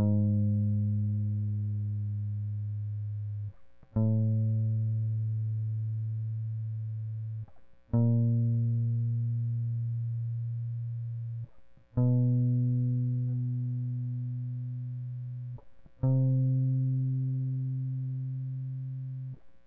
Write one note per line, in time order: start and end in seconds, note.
0.00 3.52 G#2
3.98 7.47 A2
7.95 11.47 A#2
11.99 15.61 B2
16.05 19.37 C3